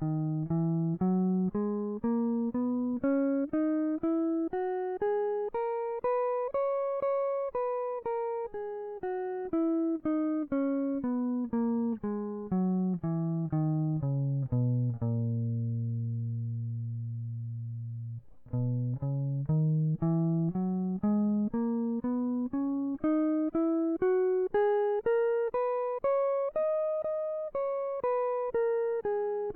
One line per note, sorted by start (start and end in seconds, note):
0.02 0.49 D#3
0.51 0.98 E3
1.02 1.52 F#3
1.55 2.00 G#3
2.04 2.52 A#3
2.55 3.00 B3
3.04 3.48 C#4
3.53 4.00 D#4
4.03 4.51 E4
4.53 5.00 F#4
5.02 5.51 G#4
5.54 6.02 A#4
6.04 6.53 B4
6.54 7.02 C#5
7.02 7.51 C#5
7.55 8.03 B4
8.06 8.48 A#4
8.54 9.01 G#4
9.03 9.50 F#4
9.53 9.99 E4
10.05 10.46 D#4
10.52 11.04 C#4
11.04 11.50 B3
11.53 11.97 A#3
12.04 12.50 G#3
12.52 12.98 F#3
13.04 13.51 E3
13.53 14.03 D#3
14.04 14.48 C#3
14.54 15.00 B2
15.04 18.21 A#2
18.55 18.99 B2
19.04 19.47 C#3
19.50 19.99 D#3
20.03 20.53 E3
20.56 21.01 F#3
21.04 21.51 G#3
21.54 22.02 A#3
22.04 22.50 B3
22.54 22.98 C#4
23.04 23.52 D#4
23.55 23.99 E4
24.02 24.50 F#4
24.54 25.03 G#4
25.06 25.50 A#4
25.54 26.01 B4
26.04 26.52 C#5
26.56 27.04 D#5
27.04 27.51 D#5
27.55 28.03 C#5
28.04 28.52 B4
28.54 29.03 A#4
29.05 29.54 G#4